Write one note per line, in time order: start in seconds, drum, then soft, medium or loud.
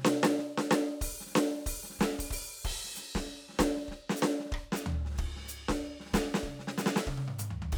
0.01 snare soft
0.05 snare loud
0.24 snare loud
0.39 snare soft
0.58 snare medium
0.72 snare loud
1.02 open hi-hat loud
1.02 kick medium
1.21 snare soft
1.27 snare soft
1.31 snare soft
1.36 snare loud
1.51 snare soft
1.55 snare soft
1.58 snare soft
1.61 snare soft
1.67 open hi-hat loud
1.67 kick medium
1.84 snare soft
1.90 snare soft
1.95 snare soft
2.00 kick soft
2.00 snare loud
2.19 kick medium
2.19 open hi-hat loud
2.31 open hi-hat loud
2.31 kick medium
2.65 kick medium
2.65 crash loud
2.85 snare soft
2.90 snare soft
2.94 snare soft
2.94 hi-hat pedal loud
2.97 snare soft
3.16 kick medium
3.16 snare medium
3.49 snare soft
3.54 snare soft
3.57 snare soft
3.60 kick medium
3.60 snare loud
3.60 hi-hat pedal loud
3.77 snare soft
3.81 snare soft
3.84 snare soft
3.89 kick soft
3.89 snare soft
4.10 snare loud
4.17 hi-hat pedal loud
4.23 snare loud
4.40 snare soft
4.46 snare soft
4.51 kick medium
4.51 cross-stick medium
4.51 snare soft
4.73 snare loud
4.73 hi-hat pedal loud
4.87 floor tom loud
4.92 kick soft
5.06 snare soft
5.11 snare soft
5.15 snare soft
5.15 ride medium
5.19 kick medium
5.19 snare soft
5.37 snare soft
5.41 snare soft
5.45 snare soft
5.45 hi-hat pedal loud
5.45 crash soft
5.69 kick medium
5.69 snare medium
5.85 snare soft
6.01 snare soft
6.06 snare soft
6.10 kick medium
6.10 snare soft
6.15 snare loud
6.15 hi-hat pedal loud
6.35 kick soft
6.35 snare loud
6.44 kick soft
6.48 high tom medium
6.60 snare soft
6.68 snare medium
6.78 snare medium
6.78 hi-hat pedal loud
6.87 snare loud
6.97 snare loud
7.08 kick medium
7.08 high tom loud
7.18 high tom medium
7.28 mid tom loud
7.39 hi-hat pedal loud
7.39 mid tom loud
7.51 floor tom medium
7.63 floor tom medium
7.73 kick medium
7.73 ride loud